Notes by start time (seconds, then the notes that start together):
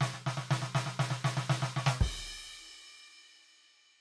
0.01 snare
0.14 snare
0.27 snare
0.38 snare
0.51 snare
0.62 snare
0.75 snare
0.86 snare
1.00 snare
1.11 snare
1.25 snare
1.37 snare
1.50 snare
1.62 snare
1.77 snare
1.87 snare
2.01 kick, crash